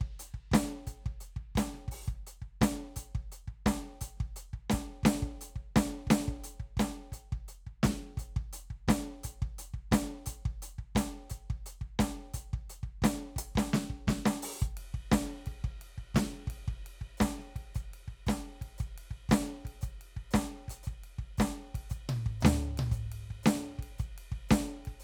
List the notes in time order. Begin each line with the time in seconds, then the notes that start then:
0.01 kick, snare
0.20 closed hi-hat
0.34 kick
0.52 closed hi-hat, kick, snare
0.67 snare
0.87 closed hi-hat, kick
1.04 kick, snare
1.21 closed hi-hat
1.37 kick
1.56 closed hi-hat, kick, snare
1.74 snare
1.88 open hi-hat, kick
2.06 kick, hi-hat pedal
2.15 snare
2.27 closed hi-hat
2.42 kick
2.61 closed hi-hat, kick, snare
2.76 snare
2.96 closed hi-hat, kick
3.15 kick
3.32 closed hi-hat
3.48 kick
3.66 closed hi-hat, kick, snare
3.82 snare
4.01 closed hi-hat, kick
4.17 kick, snare
4.21 snare
4.36 closed hi-hat
4.54 kick
4.70 closed hi-hat, kick, snare
5.04 closed hi-hat, kick, snare
5.23 kick
5.41 closed hi-hat
5.56 kick
5.76 closed hi-hat, kick, snare
6.07 closed hi-hat, kick, snare
6.28 kick
6.44 closed hi-hat
6.60 kick
6.77 closed hi-hat, kick, snare
7.12 closed hi-hat, kick
7.33 kick
7.48 closed hi-hat
7.67 kick
7.83 closed hi-hat, kick, snare
8.18 closed hi-hat, kick
8.37 kick
8.53 closed hi-hat
8.71 kick
8.88 closed hi-hat, kick, snare
9.24 closed hi-hat, kick
9.42 kick
9.59 closed hi-hat
9.74 kick
9.92 closed hi-hat, kick, snare
10.26 closed hi-hat, kick
10.46 kick
10.62 closed hi-hat
10.79 kick
10.96 closed hi-hat, kick, snare
11.13 cross-stick
11.30 closed hi-hat, kick
11.50 kick
11.66 closed hi-hat
11.82 kick
11.99 closed hi-hat, kick, snare
12.19 snare
12.34 closed hi-hat, kick
12.54 kick
12.70 closed hi-hat
12.83 kick
13.02 closed hi-hat, kick, snare
13.22 snare
13.37 kick, closed hi-hat
13.56 kick, snare
13.74 snare
13.90 kick
14.08 kick, snare
14.26 snare
14.43 open hi-hat
14.61 kick, hi-hat pedal
14.77 ride
14.94 kick
15.12 kick, snare, ride
15.27 snare
15.46 kick, ride
15.63 kick, snare
15.82 ride
15.98 kick
16.15 kick, snare, ride
16.32 snare
16.48 kick, ride
16.68 kick
16.87 ride
17.02 kick
17.18 kick, snare, hi-hat pedal
17.23 ride
17.39 snare
17.56 kick, ride
17.75 kick, hi-hat pedal
17.94 ride
18.08 kick
18.27 kick, snare, hi-hat pedal, ride
18.62 kick, ride
18.78 kick, hi-hat pedal
18.98 ride
19.11 kick
19.29 kick, snare, hi-hat pedal, ride
19.65 kick, ride
19.82 kick, hi-hat pedal
20.02 ride
20.17 kick
20.31 kick, snare, hi-hat pedal
20.35 ride
20.68 closed hi-hat, kick, ride
20.83 hi-hat pedal
20.87 kick
21.04 ride
21.19 kick
21.38 kick, snare, hi-hat pedal, ride
21.75 kick, ride
21.90 kick, hi-hat pedal
22.09 high tom, ride
22.26 kick
22.41 floor tom, hi-hat pedal
22.45 snare
22.78 high tom, ride
22.92 kick, hi-hat pedal
23.12 ride
23.31 kick
23.44 snare, hi-hat pedal
23.48 ride
23.79 kick
23.83 ride
23.99 kick, hi-hat pedal
24.18 ride
24.32 kick
24.49 kick, snare, hi-hat pedal, ride
24.86 kick, ride
25.00 hi-hat pedal